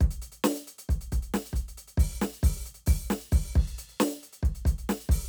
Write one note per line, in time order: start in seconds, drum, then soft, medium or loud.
0.01 kick loud
0.01 closed hi-hat medium
0.11 closed hi-hat medium
0.22 closed hi-hat medium
0.44 snare loud
0.56 closed hi-hat medium
0.68 closed hi-hat medium
0.79 closed hi-hat medium
0.89 closed hi-hat medium
0.89 kick loud
1.01 closed hi-hat medium
1.12 closed hi-hat medium
1.12 kick loud
1.23 closed hi-hat medium
1.34 snare loud
1.46 closed hi-hat medium
1.53 kick medium
1.68 closed hi-hat medium
1.78 closed hi-hat medium
1.98 open hi-hat loud
1.98 kick loud
2.13 hi-hat pedal soft
2.13 open hi-hat soft
2.22 snare loud
2.34 closed hi-hat soft
2.43 open hi-hat loud
2.43 kick loud
2.56 open hi-hat soft
2.62 closed hi-hat medium
2.62 hi-hat pedal soft
2.75 closed hi-hat medium
2.87 open hi-hat loud
2.87 kick loud
2.98 open hi-hat soft
3.07 snare loud
3.07 hi-hat pedal soft
3.20 closed hi-hat medium
3.32 open hi-hat loud
3.32 kick loud
3.45 open hi-hat medium
3.52 kick loud
3.52 hi-hat pedal soft
3.57 crash medium
3.68 closed hi-hat soft
3.78 closed hi-hat medium
3.89 closed hi-hat soft
4.00 snare loud
4.10 closed hi-hat soft
4.23 closed hi-hat medium
4.33 closed hi-hat medium
4.43 kick loud
4.43 closed hi-hat medium
4.55 closed hi-hat soft
4.66 closed hi-hat medium
4.66 kick loud
4.78 closed hi-hat medium
4.89 snare loud
5.01 closed hi-hat medium
5.09 open hi-hat loud
5.09 kick loud
5.25 open hi-hat soft